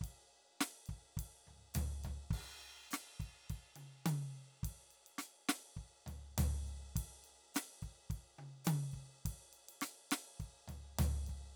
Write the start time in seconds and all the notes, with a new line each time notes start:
0.01 kick, ride
0.61 snare, hi-hat pedal, ride
0.86 kick, ride
1.17 kick, ride
1.47 floor tom
1.74 floor tom, hi-hat pedal, ride
2.04 kick, floor tom, ride
2.31 kick, crash
2.91 snare, hi-hat pedal, ride
3.20 kick, ride
3.50 kick, ride
3.76 high tom, ride
4.06 hi-hat pedal, high tom, ride
4.63 kick, ride
4.91 ride
5.06 ride
5.18 snare, hi-hat pedal, ride
5.49 snare, ride
5.77 kick
6.06 floor tom, ride
6.38 floor tom, hi-hat pedal, ride
6.67 ride
6.96 kick, ride
7.24 ride
7.54 snare, hi-hat pedal, ride
7.82 kick, ride
8.10 kick, ride
8.38 high tom
8.65 hi-hat pedal, high tom, ride
8.92 kick, ride
9.25 kick, ride
9.53 ride
9.69 ride
9.81 snare, hi-hat pedal, ride
10.11 snare, ride
10.40 kick, ride
10.68 floor tom, ride
10.99 floor tom, hi-hat pedal, ride
11.27 kick, ride